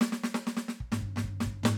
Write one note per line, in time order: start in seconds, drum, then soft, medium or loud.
0.01 snare loud
0.12 snare medium
0.24 snare loud
0.34 snare medium
0.47 snare medium
0.57 snare medium
0.68 snare medium
0.80 kick soft
0.92 snare medium
0.92 floor tom loud
1.01 kick soft
1.16 snare medium
1.16 floor tom loud
1.24 kick soft
1.40 snare loud
1.40 floor tom medium
1.46 kick soft
1.63 snare loud
1.63 floor tom loud